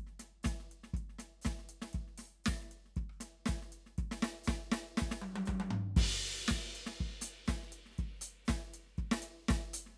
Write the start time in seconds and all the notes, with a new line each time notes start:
0.07 snare
0.20 snare, open hi-hat
0.44 kick, snare, closed hi-hat, hi-hat pedal
0.60 snare
0.72 closed hi-hat
0.84 snare
0.94 kick, closed hi-hat
1.10 snare
1.19 snare, closed hi-hat
1.42 snare, hi-hat pedal
1.46 kick, closed hi-hat
1.59 snare
1.69 closed hi-hat
1.82 snare
1.94 kick, closed hi-hat
2.08 snare
2.18 snare, open hi-hat
2.45 kick, snare, closed hi-hat, hi-hat pedal
2.62 snare
2.72 closed hi-hat
2.86 snare
2.97 kick, closed hi-hat
3.10 cross-stick
3.21 snare, open hi-hat
3.46 kick, snare, closed hi-hat, hi-hat pedal
3.63 snare
3.73 closed hi-hat
3.87 snare
3.98 kick, closed hi-hat
4.12 snare
4.23 snare
4.36 snare
4.44 snare, hi-hat pedal
4.49 kick
4.59 snare
4.72 snare
4.87 snare
4.98 snare
5.03 kick
5.12 snare
5.22 high tom
5.36 open hi-hat, high tom
5.46 kick, hi-hat pedal, high tom
5.61 closed hi-hat, high tom
5.71 floor tom
5.97 kick, crash, ride
6.48 kick, snare
6.66 snare
6.76 closed hi-hat
6.87 snare
6.98 kick, closed hi-hat
7.10 snare
7.22 open hi-hat, snare
7.46 kick, snare, closed hi-hat, hi-hat pedal
7.63 snare
7.73 closed hi-hat
7.86 snare
7.91 snare
7.95 snare, closed hi-hat
7.99 kick
8.22 open hi-hat
8.46 snare, closed hi-hat, hi-hat pedal
8.50 kick
8.74 closed hi-hat
8.87 snare
8.98 kick, closed hi-hat
9.12 snare
9.23 closed hi-hat
9.49 kick, snare, closed hi-hat
9.67 snare
9.74 closed hi-hat
9.87 snare
9.90 snare
9.94 snare